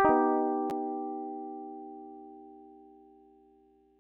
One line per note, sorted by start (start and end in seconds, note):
0.00 4.00 G4
0.05 4.00 D#4
0.10 4.00 B3